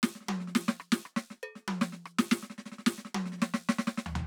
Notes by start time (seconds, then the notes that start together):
0.03 snare
0.15 snare
0.20 snare
0.26 snare, high tom
0.40 snare
0.47 snare
0.55 snare
0.68 snare
0.80 cross-stick
0.92 snare
1.05 cross-stick
1.16 snare
1.30 snare
1.43 percussion
1.55 snare
1.68 high tom
1.81 snare
1.92 snare
2.06 cross-stick
2.18 snare
2.31 snare
2.43 snare
2.50 snare
2.58 snare
2.66 snare
2.72 snare
2.78 snare
2.86 snare
2.98 snare
3.05 snare
3.15 high tom
3.26 snare
3.32 snare
3.38 snare
3.42 snare
3.54 snare
3.69 snare
3.78 snare
3.87 snare
3.97 snare
4.06 floor tom
4.15 floor tom